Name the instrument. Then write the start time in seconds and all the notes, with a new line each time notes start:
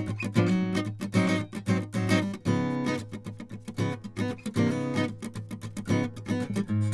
acoustic guitar
0.00 F#3
0.38 F3 B3 D4
0.42 G2
0.50 F#3 C4 D#4
0.55 G#2
0.78 C4 D#4
1.16 G#2 F#3 C4 D#4
1.30 C4 D#4
1.68 G#2 F#3 C4
1.72 D#4
1.95 G#2 F#3 C4 D#4
2.12 F#3 C4 D#4
2.24 E2 G3
2.47 C#3 B3 D#4
2.89 B3 D#4
3.79 C#3 B3 D#4
4.19 B3 D#4
4.30 C#3
4.57 C3 A#3 D4
4.71 C#3 B3 D#4
4.99 B3 D#4
5.90 C#3 B3 D#4
6.29 B3 D#4
6.42 C#3
6.70 G#2
6.83 G#2